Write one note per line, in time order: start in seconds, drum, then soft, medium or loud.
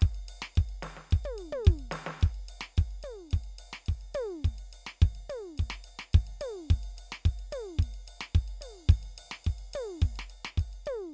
0.01 kick loud
0.01 ride medium
0.12 snare soft
0.12 ride soft
0.28 hi-hat pedal medium
0.28 ride medium
0.42 snare medium
0.56 kick medium
0.56 ride soft
0.69 ride soft
0.83 snare medium
0.83 hi-hat pedal medium
0.83 ride medium
0.97 snare soft
1.11 kick medium
1.11 ride soft
1.25 high tom medium
1.25 ride soft
1.38 hi-hat pedal medium
1.38 ride medium
1.52 high tom loud
1.65 kick loud
1.65 ride medium
1.79 ride soft
1.91 snare medium
1.91 hi-hat pedal medium
1.91 ride medium
2.07 snare medium
2.21 kick medium
2.21 ride soft
2.34 ride soft
2.48 hi-hat pedal medium
2.48 ride medium
2.61 snare medium
2.77 kick medium
2.77 ride soft
2.91 ride soft
3.03 hi-hat pedal medium
3.03 high tom medium
3.03 ride medium
3.31 kick medium
3.31 ride medium
3.44 ride soft
3.58 hi-hat pedal medium
3.58 ride medium
3.73 snare medium
3.86 kick medium
3.86 ride soft
4.01 ride soft
4.15 hi-hat pedal medium
4.15 high tom loud
4.15 ride medium
4.45 kick medium
4.45 ride soft
4.58 ride soft
4.73 hi-hat pedal medium
4.73 ride medium
4.87 snare medium
5.02 kick loud
5.02 ride soft
5.15 ride soft
5.29 hi-hat pedal medium
5.29 high tom medium
5.29 ride medium
5.58 kick medium
5.58 ride medium
5.70 snare medium
5.70 ride soft
5.84 hi-hat pedal medium
5.84 ride medium
5.99 snare medium
6.13 kick loud
6.13 ride medium
6.27 ride soft
6.41 hi-hat pedal medium
6.41 high tom loud
6.41 ride medium
6.70 kick loud
6.70 ride medium
6.83 ride soft
6.97 hi-hat pedal medium
6.97 ride medium
7.12 snare medium
7.25 kick medium
7.25 ride medium
7.39 ride soft
7.51 hi-hat pedal medium
7.51 high tom medium
7.51 ride medium
7.79 kick medium
7.79 ride medium
7.94 ride soft
8.07 hi-hat pedal medium
8.07 ride medium
8.21 snare medium
8.35 kick medium
8.35 ride soft
8.48 ride soft
8.61 hi-hat pedal medium
8.61 high tom soft
8.61 ride medium
8.89 kick loud
8.89 ride medium
9.03 ride soft
9.18 hi-hat pedal medium
9.18 ride medium
9.31 snare medium
9.45 kick medium
9.45 ride medium
9.58 ride soft
9.74 hi-hat pedal medium
9.74 high tom loud
9.74 ride medium
10.02 kick medium
10.02 ride medium
10.16 snare medium
10.16 ride soft
10.30 hi-hat pedal medium
10.30 ride medium
10.45 snare medium
10.58 kick medium
10.58 ride medium
10.73 ride soft
10.86 hi-hat pedal medium
10.86 high tom loud
10.86 ride medium